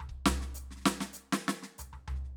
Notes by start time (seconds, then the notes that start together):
0.00 floor tom
0.09 kick
0.26 snare, floor tom
0.41 snare
0.54 hi-hat pedal
0.71 snare
0.76 snare
0.80 snare
0.85 snare
1.00 snare
1.13 snare, hi-hat pedal
1.32 snare
1.48 snare
1.62 snare
1.78 floor tom, hi-hat pedal
1.93 floor tom
2.08 floor tom
2.15 snare
2.24 snare